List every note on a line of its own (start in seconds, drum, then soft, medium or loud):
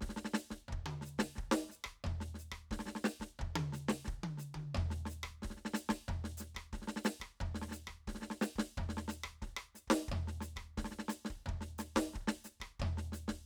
0.01 kick soft
0.01 snare soft
0.09 snare soft
0.17 snare soft
0.25 snare soft
0.34 snare medium
0.34 hi-hat pedal soft
0.51 kick soft
0.51 snare soft
0.69 floor tom medium
0.73 kick soft
0.86 high tom medium
1.02 snare soft
1.06 hi-hat pedal soft
1.18 kick soft
1.18 snare medium
1.36 kick soft
1.36 snare soft
1.52 snare medium
1.69 snare soft
1.69 hi-hat pedal soft
1.84 kick soft
1.84 cross-stick medium
2.04 kick soft
2.04 floor tom medium
2.21 snare soft
2.35 snare soft
2.39 hi-hat pedal soft
2.52 kick soft
2.52 cross-stick medium
2.71 kick soft
2.71 snare soft
2.79 snare soft
2.86 snare soft
2.88 snare soft
2.96 snare soft
3.04 snare medium
3.04 hi-hat pedal soft
3.20 kick soft
3.20 snare soft
3.39 kick soft
3.39 floor tom medium
3.56 high tom loud
3.73 snare soft
3.73 hi-hat pedal soft
3.88 kick soft
3.88 snare medium
4.05 kick soft
4.05 snare soft
4.24 high tom medium
4.38 snare soft
4.38 hi-hat pedal medium
4.55 kick soft
4.55 high tom medium
4.75 kick soft
4.75 floor tom loud
4.91 snare soft
5.06 snare soft
5.10 hi-hat pedal soft
5.23 kick soft
5.23 cross-stick medium
5.42 kick soft
5.42 snare soft
5.50 snare soft
5.57 snare soft
5.65 snare soft
5.74 snare medium
5.74 hi-hat pedal medium
5.89 kick soft
5.89 snare medium
6.08 kick soft
6.08 floor tom medium
6.24 snare soft
6.37 snare soft
6.37 hi-hat pedal medium
6.55 kick soft
6.55 cross-stick medium
6.73 kick soft
6.73 snare soft
6.82 snare soft
6.88 snare medium
6.96 snare soft
7.05 snare medium
7.05 hi-hat pedal medium
7.20 kick soft
7.20 cross-stick medium
7.41 kick soft
7.41 floor tom medium
7.55 snare soft
7.62 snare soft
7.69 snare soft
7.71 snare soft
7.71 hi-hat pedal medium
7.87 kick soft
7.87 cross-stick medium
8.08 kick soft
8.08 snare soft
8.15 snare soft
8.21 snare soft
8.22 snare soft
8.30 snare soft
8.42 snare medium
8.42 hi-hat pedal medium
8.56 kick soft
8.56 snare medium
8.78 kick soft
8.78 floor tom medium
8.89 snare soft
8.97 snare soft
9.08 snare medium
9.08 hi-hat pedal medium
9.24 kick soft
9.24 cross-stick medium
9.42 kick soft
9.42 snare soft
9.57 cross-stick medium
9.75 snare soft
9.75 hi-hat pedal medium
9.88 kick soft
9.88 snare loud
10.08 kick soft
10.08 floor tom medium
10.28 snare soft
10.41 snare soft
10.41 hi-hat pedal medium
10.56 kick soft
10.56 cross-stick medium
10.78 kick soft
10.78 snare soft
10.85 snare soft
10.91 snare soft
10.99 snare soft
11.09 snare medium
11.09 hi-hat pedal medium
11.25 snare medium
11.30 kick soft
11.46 kick soft
11.46 floor tom medium
11.61 snare soft
11.79 snare soft
11.79 hi-hat pedal medium
11.96 kick soft
11.96 snare medium
12.14 kick soft
12.14 snare soft
12.28 snare medium
12.44 snare soft
12.44 hi-hat pedal medium
12.60 kick soft
12.60 cross-stick medium
12.80 kick soft
12.80 floor tom loud
12.98 snare soft
13.12 snare soft
13.12 hi-hat pedal medium
13.28 kick soft
13.28 snare medium